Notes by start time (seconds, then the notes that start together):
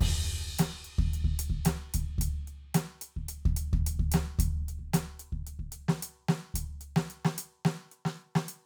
0.01 kick, crash
0.59 snare, closed hi-hat
0.85 closed hi-hat
0.99 kick
1.14 closed hi-hat
1.25 kick
1.39 closed hi-hat
1.50 kick
1.65 snare, closed hi-hat
1.94 kick, closed hi-hat
2.19 kick, closed hi-hat
2.48 closed hi-hat
2.75 snare, closed hi-hat
3.02 closed hi-hat
3.17 kick
3.29 closed hi-hat
3.46 kick
3.57 closed hi-hat
3.73 kick
3.87 closed hi-hat
4.00 kick
4.12 snare, closed hi-hat
4.39 kick, closed hi-hat
4.69 closed hi-hat
4.80 kick
4.94 snare, closed hi-hat
5.20 closed hi-hat
5.33 kick
5.47 closed hi-hat
5.60 kick
5.72 closed hi-hat
5.89 snare
6.03 closed hi-hat
6.29 snare
6.55 kick, closed hi-hat
6.81 closed hi-hat
6.96 snare
7.10 closed hi-hat
7.25 snare
7.38 closed hi-hat
7.65 snare
7.92 closed hi-hat
8.06 snare
8.36 snare
8.49 closed hi-hat